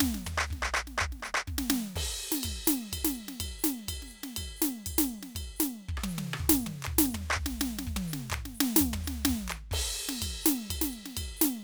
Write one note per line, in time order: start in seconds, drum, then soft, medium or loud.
0.01 kick soft
0.01 snare loud
0.09 kick soft
0.15 snare soft
0.25 floor tom loud
0.25 hi-hat pedal medium
0.38 percussion loud
0.51 kick soft
0.51 snare soft
0.57 kick soft
0.63 percussion loud
0.74 percussion loud
0.74 hi-hat pedal medium
0.88 snare soft
0.98 kick soft
0.98 percussion loud
1.13 snare soft
1.20 snare soft
1.20 percussion medium
1.20 hi-hat pedal medium
1.35 percussion loud
1.48 kick soft
1.48 snare soft
1.55 kick soft
1.59 snare medium
1.70 snare loud
1.70 hi-hat pedal medium
1.96 kick soft
1.96 crash loud
2.06 kick soft
2.17 hi-hat pedal medium
2.32 snare medium
2.44 kick soft
2.44 ride bell loud
2.52 kick soft
2.65 snare loud
2.65 hi-hat pedal medium
2.93 kick soft
2.93 ride bell loud
2.99 kick soft
3.05 snare medium
3.13 hi-hat pedal medium
3.13 ride soft
3.29 snare medium
3.41 kick soft
3.41 ride bell loud
3.47 kick soft
3.60 hi-hat pedal medium
3.65 snare medium
3.89 kick soft
3.89 ride bell loud
3.95 kick soft
4.03 snare soft
4.08 hi-hat pedal medium
4.08 ride soft
4.24 snare medium
4.37 kick soft
4.37 ride bell loud
4.57 hi-hat pedal medium
4.62 snare medium
4.87 kick soft
4.87 ride bell loud
4.93 kick soft
4.99 snare loud
5.06 hi-hat pedal medium
5.10 ride soft
5.23 snare medium
5.36 kick soft
5.36 ride bell loud
5.42 kick soft
5.57 snare medium
5.57 hi-hat pedal medium
5.89 kick soft
5.96 kick soft
5.96 cross-stick medium
6.04 high tom loud
6.09 hi-hat pedal medium
6.19 high tom loud
6.34 cross-stick loud
6.40 kick soft
6.47 kick soft
6.47 snare loud
6.57 snare soft
6.57 hi-hat pedal medium
6.67 mid tom medium
6.83 percussion loud
6.88 kick soft
6.94 kick soft
6.99 snare loud
7.06 snare soft
7.06 hi-hat pedal medium
7.15 floor tom loud
7.31 percussion loud
7.37 kick soft
7.43 kick soft
7.43 snare medium
7.60 snare loud
7.60 hi-hat pedal medium
7.79 snare medium
7.87 kick soft
7.93 kick soft
7.93 high tom loud
8.08 hi-hat pedal medium
8.14 snare medium
8.30 kick soft
8.30 percussion loud
8.38 kick soft
8.46 snare medium
8.55 hi-hat pedal medium
8.61 snare loud
8.77 snare loud
8.81 kick soft
8.87 kick soft
8.94 floor tom loud
9.04 snare medium
9.04 hi-hat pedal medium
9.26 kick soft
9.26 snare loud
9.35 kick soft
9.48 percussion loud
9.48 hi-hat pedal medium
9.72 kick medium
9.72 crash loud
9.84 kick soft
9.95 hi-hat pedal medium
10.09 snare medium
10.22 kick soft
10.22 ride bell loud
10.29 kick soft
10.42 hi-hat pedal medium
10.46 snare loud
10.70 kick soft
10.70 ride bell loud
10.77 kick soft
10.82 snare medium
10.90 hi-hat pedal medium
10.90 ride soft
11.06 snare medium
11.17 kick soft
11.17 ride bell loud
11.24 kick soft
11.37 hi-hat pedal medium
11.42 snare loud
11.59 hi-hat pedal soft